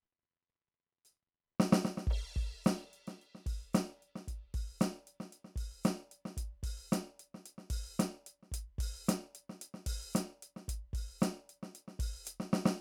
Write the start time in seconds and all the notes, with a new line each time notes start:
1.05 hi-hat pedal
1.60 snare
1.72 snare
1.85 snare
1.97 snare
2.07 kick, crash
2.36 kick, open hi-hat
2.64 snare, closed hi-hat, hi-hat pedal
2.84 snare
2.93 closed hi-hat
3.07 snare, closed hi-hat
3.21 closed hi-hat
3.35 snare
3.46 kick, open hi-hat
3.73 closed hi-hat, snare, hi-hat pedal
4.02 closed hi-hat
4.16 snare
4.27 kick, closed hi-hat
4.54 kick, open hi-hat
4.80 snare, closed hi-hat, hi-hat pedal
5.07 closed hi-hat
5.20 snare
5.32 closed hi-hat
5.44 snare
5.56 kick, open hi-hat
5.83 snare, closed hi-hat, hi-hat pedal
6.11 closed hi-hat
6.25 snare
6.37 kick, closed hi-hat
6.63 kick, open hi-hat
6.92 snare, closed hi-hat, hi-hat pedal
7.19 closed hi-hat
7.34 snare
7.45 closed hi-hat
7.58 snare
7.70 kick, open hi-hat
7.99 snare, closed hi-hat, hi-hat pedal
8.26 closed hi-hat
8.43 snare
8.51 kick, closed hi-hat
8.78 kick, open hi-hat
9.06 snare, closed hi-hat, hi-hat pedal
9.35 closed hi-hat
9.49 snare
9.61 closed hi-hat
9.74 snare
9.86 kick, open hi-hat
10.13 snare, closed hi-hat, hi-hat pedal
10.42 closed hi-hat
10.56 snare
10.68 kick, closed hi-hat
10.93 kick, open hi-hat
11.21 snare, closed hi-hat, hi-hat pedal
11.49 closed hi-hat
11.63 snare
11.75 closed hi-hat
11.88 snare
11.99 kick, open hi-hat
12.25 closed hi-hat, hi-hat pedal
12.40 snare
12.53 snare
12.66 snare